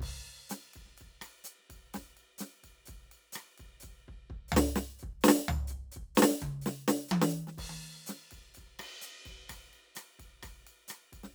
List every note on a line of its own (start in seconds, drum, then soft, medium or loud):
0.01 kick soft
0.01 crash medium
0.08 kick soft
0.50 snare medium
0.50 hi-hat pedal medium
0.50 ride medium
0.74 kick soft
0.74 ride soft
0.81 kick soft
0.86 snare soft
0.90 snare soft
0.94 snare soft
0.94 hi-hat pedal soft
0.98 kick soft
0.98 ride soft
1.06 kick soft
1.22 cross-stick medium
1.22 ride medium
1.45 hi-hat pedal medium
1.45 ride soft
1.59 snare soft
1.70 kick soft
1.70 ride medium
1.75 kick soft
1.94 kick soft
1.94 snare medium
1.94 hi-hat pedal soft
1.94 ride medium
2.02 kick soft
2.17 ride soft
2.39 snare medium
2.39 hi-hat pedal medium
2.39 ride medium
2.64 kick soft
2.64 ride soft
2.86 kick soft
2.86 hi-hat pedal soft
2.86 ride medium
2.94 kick soft
3.03 snare soft
3.12 ride soft
3.33 cross-stick medium
3.33 hi-hat pedal medium
3.33 ride medium
3.58 kick soft
3.58 ride soft
3.65 kick soft
3.81 kick soft
3.81 hi-hat pedal medium
3.81 ride medium
3.89 kick soft
4.09 kick soft
4.14 kick soft
4.30 kick soft
4.39 kick soft
4.49 hi-hat pedal soft
4.49 floor tom loud
4.57 snare loud
4.76 snare loud
4.99 hi-hat pedal soft
5.03 kick medium
5.11 kick soft
5.13 kick soft
5.21 snare loud
5.21 hi-hat pedal soft
5.29 snare loud
5.38 snare soft
5.45 hi-hat pedal soft
5.49 kick soft
5.49 floor tom loud
5.68 kick soft
5.68 hi-hat pedal medium
5.77 kick soft
5.92 hi-hat pedal medium
5.97 kick soft
6.03 kick soft
6.16 snare loud
6.16 hi-hat pedal medium
6.23 snare loud
6.31 snare soft
6.40 kick soft
6.40 hi-hat pedal medium
6.40 mid tom medium
6.49 kick soft
6.62 hi-hat pedal soft
6.66 snare loud
6.88 snare loud
6.88 hi-hat pedal medium
7.04 snare soft
7.09 hi-hat pedal medium
7.09 high tom loud
7.22 snare loud
7.29 hi-hat pedal medium
7.33 kick soft
7.48 snare soft
7.58 kick soft
7.58 cross-stick soft
7.58 hi-hat pedal soft
7.58 crash medium
7.65 kick soft
7.70 high tom soft
8.07 snare medium
8.07 hi-hat pedal medium
8.07 ride medium
8.31 kick soft
8.31 ride medium
8.38 kick soft
8.54 kick soft
8.54 hi-hat pedal soft
8.54 ride soft
8.63 kick soft
8.80 cross-stick medium
8.80 ride medium
9.02 hi-hat pedal medium
9.02 ride soft
9.26 kick soft
9.26 ride soft
9.32 kick soft
9.49 kick soft
9.49 cross-stick medium
9.49 hi-hat pedal soft
9.49 ride medium
9.69 snare soft
9.74 ride soft
9.96 cross-stick medium
9.96 hi-hat pedal medium
9.96 ride medium
10.19 kick soft
10.19 ride soft
10.25 kick soft
10.43 kick soft
10.43 cross-stick medium
10.43 hi-hat pedal soft
10.43 ride medium
10.49 kick soft
10.64 snare soft
10.64 ride medium
10.88 cross-stick medium
10.88 hi-hat pedal medium
10.88 ride medium
11.13 kick soft
11.13 ride soft
11.18 kick soft
11.24 snare soft